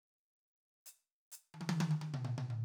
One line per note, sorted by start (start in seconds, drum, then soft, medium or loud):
0.86 hi-hat pedal medium
1.32 hi-hat pedal medium
1.54 high tom medium
1.61 high tom medium
1.69 high tom loud
1.80 high tom loud
1.91 high tom medium
2.01 high tom medium
2.14 mid tom medium
2.25 mid tom medium
2.38 mid tom medium
2.50 mid tom medium